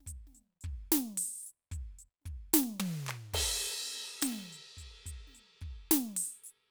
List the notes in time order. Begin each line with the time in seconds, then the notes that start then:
0.01 snare
0.07 closed hi-hat, kick
0.27 snare
0.33 closed hi-hat, snare
0.36 snare
0.61 closed hi-hat, kick
0.70 kick
0.92 snare, closed hi-hat
1.18 open hi-hat, snare
1.44 closed hi-hat, hi-hat pedal
1.72 closed hi-hat, kick
1.99 closed hi-hat
2.22 kick, snare
2.26 closed hi-hat
2.54 closed hi-hat, snare
2.64 snare
2.80 high tom
3.07 percussion
3.34 kick, crash
3.63 closed hi-hat
3.83 snare
3.91 snare, closed hi-hat
3.94 snare
4.22 closed hi-hat, snare
4.33 snare
4.53 closed hi-hat
4.77 closed hi-hat, kick
5.06 closed hi-hat, kick
5.28 snare
5.34 closed hi-hat, snare
5.61 kick, closed hi-hat
5.91 closed hi-hat, snare
6.17 open hi-hat
6.44 closed hi-hat, hi-hat pedal